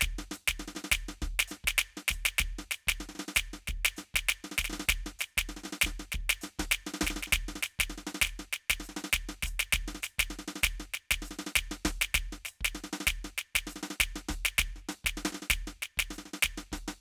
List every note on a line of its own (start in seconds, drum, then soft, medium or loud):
0.01 kick medium
0.01 snare loud
0.09 kick soft
0.18 snare medium
0.31 snare medium
0.31 hi-hat pedal medium
0.48 kick soft
0.48 snare loud
0.59 snare soft
0.68 snare soft
0.75 snare soft
0.75 snare medium
0.84 snare medium
0.92 kick soft
0.92 snare loud
0.92 hi-hat pedal medium
1.08 snare soft
1.22 kick soft
1.22 snare soft
1.28 kick soft
1.31 kick soft
1.39 snare loud
1.48 snare soft
1.48 hi-hat pedal medium
1.64 kick soft
1.64 snare loud
1.78 snare loud
1.97 snare soft
2.08 kick soft
2.08 snare loud
2.08 hi-hat pedal medium
2.25 snare loud
2.38 kick soft
2.38 snare loud
2.46 kick soft
2.59 snare soft
2.71 snare medium
2.71 hi-hat pedal soft
2.87 kick soft
2.87 snare loud
3.00 snare soft
3.09 snare soft
3.15 snare soft
3.19 snare medium
3.28 snare medium
3.35 kick soft
3.35 snare loud
3.35 hi-hat pedal medium
3.53 snare soft
3.67 kick soft
3.67 snare medium
3.77 kick soft
3.85 snare loud
3.97 snare soft
3.97 hi-hat pedal soft
4.14 kick soft
4.14 snare loud
4.29 snare loud
4.44 snare soft
4.51 snare soft
4.58 kick soft
4.58 snare medium
4.58 hi-hat pedal soft
4.64 snare medium
4.70 snare soft
4.73 snare medium
4.80 snare medium
4.89 kick soft
4.89 snare loud
4.95 kick soft
5.06 snare medium
5.19 snare medium
5.19 hi-hat pedal medium
5.37 kick soft
5.37 snare loud
5.49 snare soft
5.56 snare soft
5.64 snare soft
5.65 snare medium
5.72 snare medium
5.81 kick soft
5.81 snare loud
5.81 hi-hat pedal soft
5.86 kick soft
5.86 snare medium
5.99 snare soft
6.12 kick soft
6.12 snare medium
6.20 kick soft
6.29 snare loud
6.41 snare medium
6.41 hi-hat pedal medium
6.59 kick soft
6.59 snare medium
6.71 snare loud
6.87 snare medium
6.94 snare medium
7.01 kick soft
7.01 snare medium
7.05 snare medium
7.05 hi-hat pedal soft
7.10 snare medium
7.16 snare medium
7.23 snare medium
7.27 snare soft
7.32 kick soft
7.32 snare loud
7.39 kick soft
7.48 snare soft
7.55 snare soft
7.63 snare medium
7.63 hi-hat pedal medium
7.79 kick soft
7.79 snare loud
7.90 snare soft
7.98 snare soft
8.07 snare medium
8.15 snare medium
8.22 kick soft
8.22 snare loud
8.22 hi-hat pedal soft
8.26 snare soft
8.39 snare soft
8.53 snare medium
8.70 kick soft
8.70 snare loud
8.80 snare soft
8.80 hi-hat pedal soft
8.89 snare soft
8.96 snare medium
9.04 snare medium
9.13 kick soft
9.13 snare loud
9.29 snare medium
9.43 kick soft
9.43 snare medium
9.43 hi-hat pedal medium
9.51 kick soft
9.59 snare medium
9.73 kick soft
9.73 snare loud
9.82 kick soft
9.88 snare medium
9.95 snare soft
10.03 snare medium
10.03 hi-hat pedal medium
10.19 kick soft
10.19 snare loud
10.30 snare soft
10.39 snare soft
10.48 snare medium
10.56 snare soft
10.63 kick soft
10.63 snare loud
10.63 hi-hat pedal medium
10.80 snare soft
10.94 snare medium
11.11 kick soft
11.11 snare loud
11.22 snare soft
11.22 hi-hat pedal soft
11.31 snare soft
11.39 snare medium
11.46 snare medium
11.56 kick soft
11.56 snare loud
11.71 snare medium
11.85 kick soft
11.85 snare medium
11.85 hi-hat pedal soft
12.01 snare loud
12.14 kick soft
12.14 snare loud
12.21 kick soft
12.32 snare soft
12.45 snare medium
12.45 hi-hat pedal medium
12.61 kick soft
12.61 snare medium
12.75 snare soft
12.84 snare soft
12.93 snare medium
13.00 snare medium
13.07 kick soft
13.07 snare loud
13.07 hi-hat pedal soft
13.24 snare soft
13.38 snare medium
13.55 kick soft
13.55 snare loud
13.67 snare soft
13.67 hi-hat pedal medium
13.76 snare soft
13.83 snare medium
13.90 snare medium
14.00 kick soft
14.00 snare loud
14.16 snare medium
14.29 kick soft
14.29 snare medium
14.29 hi-hat pedal soft
14.45 snare loud
14.58 kick soft
14.58 snare loud
14.65 kick soft
14.68 kick soft
14.76 snare soft
14.89 snare medium
14.89 hi-hat pedal soft
15.04 kick soft
15.04 snare medium
15.17 snare medium
15.25 snare medium
15.32 snare soft
15.34 snare medium
15.42 snare soft
15.50 kick soft
15.50 snare loud
15.50 hi-hat pedal soft
15.56 kick soft
15.67 snare soft
15.82 snare medium
15.97 kick soft
15.97 snare loud
16.10 snare soft
16.10 hi-hat pedal soft
16.18 snare soft
16.26 snare soft
16.33 snare medium
16.43 kick soft
16.43 snare loud
16.58 snare medium
16.72 kick soft
16.72 snare medium
16.72 hi-hat pedal soft
16.88 snare medium